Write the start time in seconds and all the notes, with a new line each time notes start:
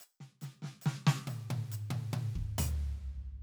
0.00 percussion
0.20 snare
0.41 snare, percussion
0.62 snare
0.64 snare
0.81 percussion
0.86 snare
1.07 snare
1.27 high tom, percussion
1.50 high tom, percussion
1.72 percussion
1.90 high tom
2.13 high tom
2.35 kick
2.58 floor tom, percussion